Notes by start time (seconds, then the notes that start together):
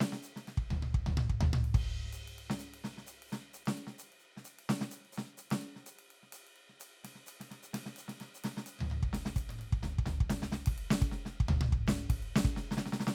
0.01 snare, ride
0.13 snare
0.23 hi-hat pedal, ride
0.37 snare, ride
0.48 snare, ride
0.58 kick
0.71 floor tom
0.83 high tom
0.95 kick
1.07 floor tom
1.18 high tom
1.30 kick
1.41 floor tom
1.54 high tom
1.65 ride
1.75 kick, ride
2.06 snare
2.13 snare, hi-hat pedal, ride
2.28 hi-hat pedal, ride
2.39 ride
2.50 snare
2.60 hi-hat pedal, ride
2.74 ride
2.84 snare, ride
2.98 snare
3.07 hi-hat pedal, ride
3.23 ride
3.29 hi-hat pedal
3.33 snare, ride
3.54 hi-hat pedal, ride
3.66 snare, ride
3.78 ride
3.87 snare
3.99 hi-hat pedal, ride
4.13 ride
4.20 hi-hat pedal
4.24 ride
4.37 snare
4.45 hi-hat pedal, ride
4.59 ride
4.70 snare, ride
4.81 snare
4.92 hi-hat pedal, ride
5.06 ride
5.13 hi-hat pedal
5.17 snare, ride
5.38 hi-hat pedal, ride
5.51 snare, ride
5.62 ride
5.76 snare
5.87 hi-hat pedal, ride
5.99 ride
6.11 ride
6.23 snare
6.33 hi-hat pedal, ride
6.47 ride
6.56 ride
6.69 snare
6.76 snare
6.80 hi-hat pedal, ride
7.04 snare, ride
7.15 snare
7.27 hi-hat pedal, ride
7.41 snare, ride
7.51 snare, ride
7.63 hi-hat pedal
7.74 snare, ride
7.86 snare
7.97 hi-hat pedal, ride
8.09 snare, ride
8.21 snare, ride
8.35 hi-hat pedal
8.44 snare, ride
8.58 snare
8.67 hi-hat pedal, ride
8.80 floor tom, high tom
8.91 floor tom, high tom
9.03 kick
9.13 snare, ride
9.26 snare
9.36 kick, hi-hat pedal, ride
9.50 high tom, ride
9.59 high tom, ride
9.73 kick
9.83 snare, floor tom
9.99 kick
10.06 snare, floor tom
10.21 kick
10.30 snare, ride
10.43 snare
10.52 snare
10.67 kick, ride
10.79 ride
10.91 snare
11.02 kick, ride
11.12 snare
11.26 snare
11.41 kick
11.49 floor tom
11.61 high tom
11.73 kick
11.88 snare, ride
12.10 kick, ride
12.23 ride
12.36 snare
12.45 kick, ride
12.57 snare
12.71 snare
12.78 snare
12.86 snare
12.93 snare
13.00 snare
13.08 snare